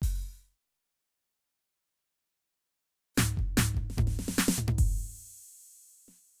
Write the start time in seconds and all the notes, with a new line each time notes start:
0.02 open hi-hat, kick
3.15 snare, hi-hat pedal
3.19 floor tom
3.37 kick, floor tom
3.57 snare, floor tom
3.75 kick, floor tom
3.90 snare
3.98 kick, floor tom
4.07 snare
4.19 snare
4.28 snare
4.38 snare
4.48 snare
4.58 floor tom
4.78 kick, crash
6.08 snare